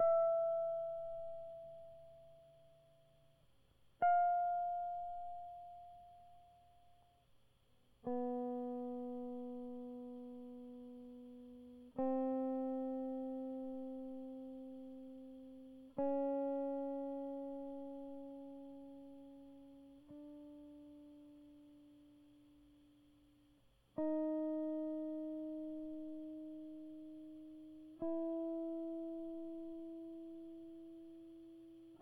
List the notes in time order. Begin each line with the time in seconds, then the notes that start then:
0.00 E5
4.02 F5
8.07 B3
11.99 C4
15.98 C#4
20.04 D4
23.98 D#4
28.02 E4